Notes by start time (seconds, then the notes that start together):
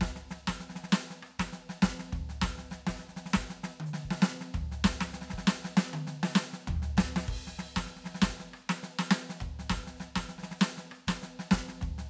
0.01 kick, snare
0.08 kick
0.11 kick
0.16 snare
0.30 snare, hi-hat pedal
0.48 kick, snare
0.60 snare
0.70 snare
0.76 snare
0.84 snare
0.89 snare, hi-hat pedal
1.11 snare
1.23 cross-stick
1.39 kick, snare
1.51 snare, hi-hat pedal
1.69 snare
1.82 kick, snare
1.99 snare
2.13 kick, floor tom, hi-hat pedal
2.19 kick
2.29 snare
2.42 kick, snare
2.50 kick
2.58 snare
2.70 snare, hi-hat pedal
2.87 kick, snare
2.99 snare
3.09 snare
3.17 snare
3.26 snare, hi-hat pedal
3.34 kick, snare
3.42 kick
3.50 snare
3.64 snare
3.80 open hi-hat, high tom
3.86 hi-hat pedal
3.94 snare
4.05 kick
4.11 snare
4.22 snare
4.41 snare
4.54 kick, floor tom, hi-hat pedal
4.63 kick
4.72 snare
4.84 kick, snare
4.91 kick
5.01 snare
5.12 snare, hi-hat pedal
5.22 snare
5.28 snare
5.30 kick, snare
5.38 snare
5.47 snare
5.65 snare
5.77 snare, hi-hat pedal
5.93 high tom
6.07 snare
6.23 snare
6.35 snare, hi-hat pedal
6.53 snare
6.68 kick, floor tom
6.75 kick
6.77 kick
6.82 snare
6.97 kick, snare, hi-hat pedal
7.04 kick
7.16 snare
7.28 kick, crash
7.36 kick
7.47 snare
7.59 snare, hi-hat pedal
7.76 kick, snare
7.87 snare
7.96 snare
8.04 snare
8.06 snare
8.15 snare
8.22 kick, snare, hi-hat pedal
8.29 kick
8.40 snare
8.54 cross-stick
8.69 snare
8.81 snare, hi-hat pedal
8.99 snare
9.11 snare
9.30 snare
9.40 kick, hi-hat pedal, floor tom
9.59 snare
9.70 kick, snare
9.81 kick
9.87 snare
9.98 snare, hi-hat pedal
10.16 kick, snare
10.29 snare
10.38 snare
10.43 snare
10.51 snare
10.59 snare, hi-hat pedal
10.78 snare
10.92 cross-stick
11.08 kick, snare
11.19 snare, hi-hat pedal
11.39 snare
11.51 kick, snare
11.59 kick
11.62 kick
11.69 snare
11.82 kick, floor tom, hi-hat pedal
11.89 kick
11.98 snare